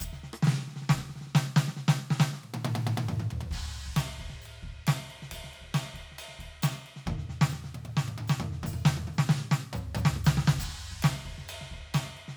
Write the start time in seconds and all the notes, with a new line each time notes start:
0.01 kick, ride bell, percussion
0.08 kick
0.13 snare
0.24 snare
0.34 cross-stick
0.43 snare
0.48 snare
0.53 snare
0.59 snare
0.64 snare
0.68 snare
0.74 snare
0.77 snare
0.82 snare
0.90 kick, snare
0.99 snare
1.04 snare
1.10 snare
1.16 snare
1.22 snare
1.27 snare
1.32 kick, snare
1.35 snare
1.46 snare
1.57 snare
1.68 snare
1.77 snare
1.89 snare
1.99 snare
2.11 snare
2.20 snare
2.33 snare
2.44 high tom
2.54 high tom
2.65 high tom
2.76 high tom
2.87 high tom
2.98 high tom
3.09 mid tom
3.20 mid tom
3.31 floor tom
3.41 floor tom
3.51 kick, percussion, crash, floor tom
3.65 kick
3.86 kick
3.91 kick
3.97 snare, ride, percussion
4.20 kick, ride
4.26 kick
4.30 snare
4.42 ride, percussion
4.64 kick
4.70 kick
4.87 snare, ride, percussion
5.11 ride
5.23 snare
5.32 kick, ride, percussion
5.45 snare
5.54 ride
5.62 kick
5.75 snare, ride bell, percussion
5.94 kick, ride
6.00 kick
6.12 snare
6.19 ride bell, percussion
6.29 snare
6.35 snare
6.40 kick, ride
6.45 kick
6.63 snare, ride bell, percussion
6.72 snare
6.87 ride
6.97 snare
7.07 kick, mid tom
7.14 kick
7.19 snare
7.30 snare
7.42 snare
7.50 snare, percussion
7.65 snare
7.75 high tom
7.86 high tom
7.97 snare
8.02 percussion
8.08 high tom
8.18 high tom
8.28 snare, percussion
8.40 mid tom
8.53 snare
8.63 kick, mid tom, percussion
8.86 snare
8.97 mid tom
9.08 mid tom
9.14 percussion
9.19 snare
9.30 snare
9.35 percussion
9.41 snare
9.52 snare, percussion
9.74 percussion, floor tom
9.95 percussion, floor tom
10.06 snare
10.16 cross-stick
10.25 snare, percussion
10.38 snare
10.48 snare
10.59 kick, percussion, crash
10.67 kick, cross-stick
10.72 kick
10.92 kick
10.98 kick
11.02 kick, snare, ride, percussion
11.26 kick, ride
11.39 snare
11.49 ride bell, percussion
11.62 snare
11.72 kick, ride
11.95 snare, ride bell, percussion
12.17 ride
12.29 snare